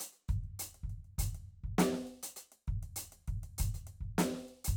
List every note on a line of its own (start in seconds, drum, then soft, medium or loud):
0.00 closed hi-hat loud
0.12 closed hi-hat soft
0.28 closed hi-hat soft
0.28 kick medium
0.43 closed hi-hat soft
0.59 closed hi-hat loud
0.74 closed hi-hat soft
0.83 kick soft
0.89 closed hi-hat soft
1.04 closed hi-hat soft
1.18 closed hi-hat loud
1.18 kick medium
1.29 kick soft
1.34 closed hi-hat soft
1.48 closed hi-hat soft
1.63 kick soft
1.78 closed hi-hat loud
1.78 snare loud
1.93 snare soft
2.07 closed hi-hat soft
2.23 closed hi-hat loud
2.36 closed hi-hat medium
2.52 closed hi-hat soft
2.67 kick medium
2.67 closed hi-hat soft
2.83 closed hi-hat soft
2.96 closed hi-hat loud
3.12 closed hi-hat soft
3.27 kick medium
3.27 closed hi-hat soft
3.43 closed hi-hat soft
3.58 closed hi-hat loud
3.58 kick medium
3.74 closed hi-hat soft
3.87 closed hi-hat soft
4.00 kick soft
4.18 closed hi-hat loud
4.18 snare loud
4.33 snare soft
4.48 closed hi-hat soft
4.64 closed hi-hat loud
4.64 kick medium